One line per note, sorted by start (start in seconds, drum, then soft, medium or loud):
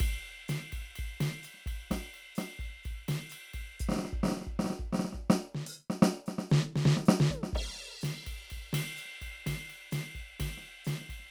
0.01 kick medium
0.01 hi-hat pedal medium
0.01 ride loud
0.13 kick soft
0.49 snare medium
0.49 hi-hat pedal loud
0.49 ride medium
0.73 kick soft
0.73 ride medium
0.79 kick soft
0.79 snare soft
0.96 kick soft
0.96 hi-hat pedal soft
0.96 ride medium
1.05 kick soft
1.21 snare medium
1.21 ride medium
1.44 hi-hat pedal medium
1.44 ride medium
1.55 snare soft
1.67 kick soft
1.67 ride medium
1.73 kick soft
1.91 kick soft
1.91 snare medium
1.91 hi-hat pedal soft
1.91 ride medium
1.97 kick soft
2.15 ride soft
2.36 snare medium
2.36 hi-hat pedal medium
2.36 ride medium
2.59 kick soft
2.59 snare soft
2.59 ride soft
2.65 kick soft
2.71 snare soft
2.84 kick soft
2.84 hi-hat pedal soft
2.84 ride soft
2.92 kick soft
3.09 snare medium
3.09 ride medium
3.31 hi-hat pedal medium
3.31 ride medium
3.54 kick soft
3.54 ride medium
3.60 kick soft
3.60 snare soft
3.80 kick soft
3.80 hi-hat pedal loud
3.90 snare medium
3.93 snare medium
3.97 snare medium
4.00 snare medium
4.04 snare soft
4.06 snare soft
4.14 kick soft
4.19 kick soft
4.24 snare medium
4.26 snare medium
4.29 snare medium
4.33 snare medium
4.38 snare soft
4.42 snare soft
4.48 kick soft
4.53 kick soft
4.60 snare medium
4.65 snare medium
4.67 snare medium
4.71 snare soft
4.74 snare soft
4.80 kick soft
4.85 kick soft
4.94 snare medium
4.95 snare medium
5.00 snare medium
5.06 snare soft
5.13 kick soft
5.13 snare soft
5.20 kick soft
5.31 snare loud
5.56 snare medium
5.67 open hi-hat loud
5.74 hi-hat pedal soft
5.91 snare medium
6.03 snare loud
6.27 snare medium
6.27 hi-hat pedal medium
6.39 snare medium
6.51 snare loud
6.51 hi-hat pedal medium
6.77 snare medium
6.77 hi-hat pedal medium
6.86 snare loud
6.98 snare medium
7.06 snare loud
7.06 hi-hat pedal medium
7.21 snare loud
7.30 kick soft
7.30 hi-hat pedal medium
7.30 high tom medium
7.35 kick soft
7.44 snare medium
7.54 kick soft
7.54 snare soft
7.54 crash loud
7.60 kick soft
7.65 snare soft
7.70 snare soft
7.74 snare soft
7.77 snare soft
8.02 snare medium
8.02 hi-hat pedal medium
8.02 ride medium
8.24 kick soft
8.24 snare soft
8.24 ride medium
8.33 kick soft
8.50 kick soft
8.50 hi-hat pedal soft
8.50 ride medium
8.58 kick soft
8.74 snare medium
8.74 ride loud
8.98 hi-hat pedal medium
8.98 ride soft
9.06 snare soft
9.23 kick soft
9.23 ride medium
9.28 kick soft
9.46 kick soft
9.46 snare medium
9.46 hi-hat pedal soft
9.46 ride medium
9.53 kick soft
9.71 ride soft
9.92 snare medium
9.92 hi-hat pedal medium
9.92 ride medium
10.16 kick soft
10.16 ride soft
10.21 kick soft
10.40 kick soft
10.40 snare medium
10.40 hi-hat pedal soft
10.40 ride medium
10.58 snare soft
10.63 ride soft
10.86 snare medium
10.86 hi-hat pedal medium
10.86 ride medium
11.02 snare soft
11.10 kick soft
11.10 ride soft
11.20 snare soft